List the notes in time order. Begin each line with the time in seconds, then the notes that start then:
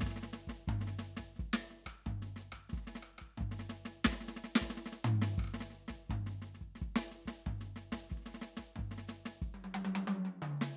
0.01 kick, snare
0.06 snare
0.11 snare
0.16 snare
0.23 snare
0.33 snare, hi-hat pedal
0.48 kick, snare
0.68 kick, floor tom
0.81 snare
0.87 snare
0.99 snare, hi-hat pedal
1.17 kick, snare
1.36 kick, snare
1.54 snare
1.68 snare, hi-hat pedal
1.87 kick, cross-stick
2.06 kick, floor tom
2.22 snare
2.36 snare, hi-hat pedal
2.52 kick, cross-stick
2.70 kick, snare
2.78 snare
2.84 snare
2.87 snare
2.96 snare
3.03 cross-stick
3.08 hi-hat pedal
3.19 kick, cross-stick
3.38 kick, floor tom
3.52 snare
3.60 snare
3.69 snare, hi-hat pedal
3.86 snare
4.05 kick, snare
4.13 snare
4.21 snare
4.28 snare
4.37 snare
4.44 snare
4.56 snare
4.62 kick, snare
4.70 snare
4.77 snare
4.86 snare
4.93 snare
5.05 floor tom
5.22 snare
5.38 kick, cross-stick
5.44 cross-stick
5.48 cross-stick
5.54 snare
5.61 snare
5.68 snare
5.70 snare
5.88 kick, snare
6.10 kick, floor tom
6.27 snare
6.42 snare, hi-hat pedal
6.55 snare
6.62 kick
6.76 snare
6.82 kick
6.96 snare
7.11 snare, hi-hat pedal
7.26 kick, snare
7.47 kick, floor tom
7.61 snare
7.76 snare, hi-hat pedal
7.92 kick, snare
8.10 kick, snare
8.17 snare
8.22 snare
8.26 snare
8.35 snare
8.42 snare, hi-hat pedal
8.57 kick, snare
8.76 kick, floor tom
8.91 snare
8.98 snare
9.08 snare, hi-hat pedal
9.26 snare
9.42 kick
9.54 high tom
9.75 high tom
9.85 high tom
9.96 high tom
10.08 hi-hat pedal, high tom
10.25 high tom
10.42 mid tom
10.62 snare